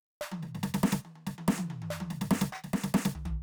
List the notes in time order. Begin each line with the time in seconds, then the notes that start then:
0.22 percussion
0.32 high tom
0.43 snare
0.55 snare
0.64 snare
0.74 snare
0.84 snare
0.93 snare
1.05 high tom
1.16 high tom
1.27 snare
1.39 high tom
1.48 snare
1.58 high tom
1.71 high tom
1.82 high tom
1.91 percussion
2.01 high tom
2.11 snare
2.22 snare
2.31 snare
2.42 snare
2.53 percussion
2.64 snare
2.74 snare
2.84 snare
2.94 snare
3.06 snare
3.16 floor tom
3.26 floor tom